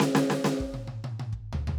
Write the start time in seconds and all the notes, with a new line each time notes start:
0.00 snare, hi-hat pedal
0.15 snare
0.30 snare
0.44 snare, hi-hat pedal
0.60 kick
0.74 high tom
0.88 high tom
1.04 high tom
1.20 high tom
1.33 kick
1.53 floor tom
1.67 floor tom